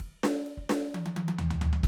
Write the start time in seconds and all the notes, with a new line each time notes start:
0.00 kick, ride
0.23 snare, ride
0.46 ride
0.57 kick
0.69 snare, ride
0.94 high tom
1.06 high tom
1.16 high tom
1.28 high tom
1.39 floor tom
1.51 floor tom
1.61 floor tom
1.73 floor tom
1.83 kick, ride